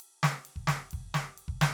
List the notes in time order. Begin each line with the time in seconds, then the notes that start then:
0.00 ride
0.23 snare, ride
0.45 ride
0.56 kick
0.67 snare, ride
0.91 kick, ride
1.14 snare, ride
1.38 ride
1.48 kick
1.61 snare, ride